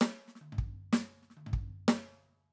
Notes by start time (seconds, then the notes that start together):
0.00 snare, hi-hat pedal
0.28 snare
0.35 snare
0.41 high tom
0.52 floor tom
0.58 kick
0.93 snare
1.22 snare
1.30 snare
1.37 high tom
1.46 floor tom
1.53 kick
1.88 snare